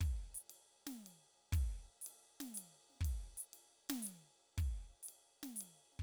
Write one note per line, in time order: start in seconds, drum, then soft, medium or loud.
0.01 kick soft
0.01 ride soft
0.34 hi-hat pedal medium
0.50 ride soft
0.87 snare soft
0.87 ride soft
1.06 ride soft
1.52 kick soft
1.52 ride medium
2.01 hi-hat pedal medium
2.06 ride medium
2.40 snare soft
2.40 ride soft
2.54 hi-hat pedal medium
2.54 ride soft
2.90 snare soft
2.94 snare soft
3.01 kick soft
3.01 ride medium
3.37 hi-hat pedal medium
3.53 ride soft
3.89 snare medium
3.89 ride soft
4.02 hi-hat pedal medium
4.07 ride soft
4.58 kick soft
4.58 ride soft
5.03 hi-hat pedal medium
5.09 ride soft
5.43 snare soft
5.43 ride soft
5.56 hi-hat pedal medium
5.61 ride soft
5.92 snare soft
5.99 kick soft